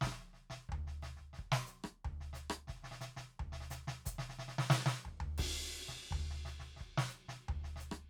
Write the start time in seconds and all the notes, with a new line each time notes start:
0.01 kick, snare
0.07 cross-stick
0.12 snare
0.16 snare
0.19 snare
0.28 snare
0.34 snare
0.42 snare
0.50 kick, snare
0.69 kick, floor tom
0.87 snare
1.02 snare, hi-hat pedal
1.17 kick, snare
1.34 snare
1.39 kick
1.52 snare
1.67 snare, hi-hat pedal
1.84 kick, cross-stick
2.05 kick, floor tom
2.21 snare
2.33 snare, hi-hat pedal
2.50 kick, cross-stick
2.68 kick, snare
2.76 snare
2.83 snare
2.92 snare
3.01 snare, hi-hat pedal
3.17 kick, snare
3.40 kick, floor tom
3.53 snare
3.61 snare
3.71 snare, hi-hat pedal
3.88 snare
4.06 kick, snare, hi-hat pedal
4.16 kick, snare
4.30 snare
4.39 snare
4.49 snare
4.59 snare
4.71 snare, hi-hat pedal
4.86 snare
5.05 kick, floor tom
5.21 floor tom
5.38 kick, ride
5.74 snare
5.89 kick, snare
6.11 kick, floor tom
6.31 snare
6.46 snare, hi-hat pedal
6.60 kick, snare
6.77 snare
6.81 kick
6.98 snare
7.10 snare, hi-hat pedal
7.29 kick, snare
7.49 kick, floor tom
7.64 snare
7.76 snare
7.81 hi-hat pedal
7.92 kick, cross-stick